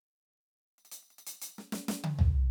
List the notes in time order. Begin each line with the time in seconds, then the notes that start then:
0.78 closed hi-hat
0.85 closed hi-hat
0.91 closed hi-hat
1.03 closed hi-hat
1.10 closed hi-hat
1.18 closed hi-hat
1.27 closed hi-hat
1.42 closed hi-hat
1.58 snare
1.72 snare
1.88 snare
2.04 high tom
2.19 floor tom